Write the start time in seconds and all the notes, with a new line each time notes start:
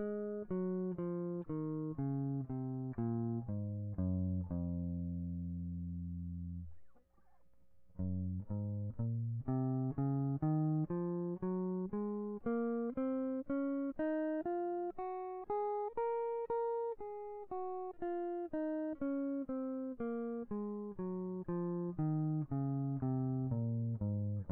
0.00 G#3
0.51 F#3
0.99 F3
1.50 D#3
2.00 C#3
2.51 C3
3.00 A#2
3.51 G#2
4.00 F#2
4.53 F2
8.02 F#2
8.53 G#2
9.01 A#2
9.49 C3
9.99 C#3
10.43 D#3
10.91 F3
11.43 F#3
11.94 G#3
12.47 A#3
12.98 C4
13.50 C#4
14.00 D#4
14.46 F4
14.99 F#4
15.50 G#4
15.98 A#4
16.50 A#4
17.00 G#4
17.51 F#4
18.02 F4
18.54 D#4
19.02 C#4
19.49 C4
20.01 A#3
20.51 G#3
20.99 F#3
21.49 F3
22.00 D#3
22.53 C#3
23.03 C3
23.53 A#2
24.04 G#2